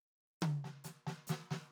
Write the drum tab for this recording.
HH |--p-p-p-|
SD |---ooooo|
T1 |--o-----|